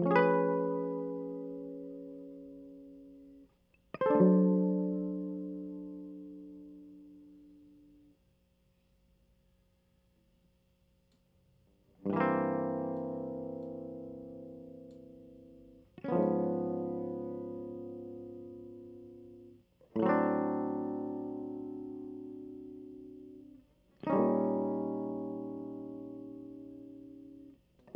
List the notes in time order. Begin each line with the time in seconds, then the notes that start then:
0.00 F3 A3
0.06 C#4
0.11 G#4
0.16 B4 D5
4.02 C5
4.06 A4
4.11 D4
4.16 A3
4.21 F#3
12.08 G2
12.14 E3 A#3
12.21 C4
16.05 C#4
16.09 F3 B3
16.20 G#2
19.98 A2
20.02 A2 F#3
20.07 C4 D4 A4
24.07 C#4 D#4
24.14 G3
24.18 A2 A#2